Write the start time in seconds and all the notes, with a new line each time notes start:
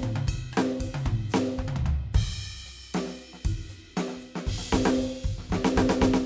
0.01 kick, hi-hat pedal, mid tom
0.16 high tom
0.28 kick, ride bell
0.52 kick, cross-stick, hi-hat pedal
0.58 snare
0.80 kick, ride
0.95 high tom
1.06 kick, mid tom
1.30 hi-hat pedal, ride bell
1.34 snare
1.49 snare
1.58 kick, mid tom
1.68 high tom
1.77 floor tom
1.82 kick
1.86 floor tom
2.14 kick, hi-hat pedal, crash
2.66 hi-hat pedal
2.95 snare, ride
3.07 snare
3.09 snare
3.12 snare
3.20 ride
3.34 snare
3.45 kick, ride
3.70 hi-hat pedal, ride
3.97 snare, ride bell
4.09 snare
4.13 kick, snare
4.20 hi-hat pedal, ride
4.36 snare
4.47 kick, ride
4.59 snare
4.67 snare
4.73 kick, snare, hi-hat pedal
4.86 snare
4.98 kick, snare
5.11 snare
5.16 snare
5.18 snare
5.21 snare, ride
5.25 kick, hi-hat pedal
5.38 snare
5.43 snare
5.50 kick, snare, hi-hat pedal
5.65 snare
5.75 kick, snare, hi-hat pedal
5.90 snare
6.02 kick, snare
6.14 snare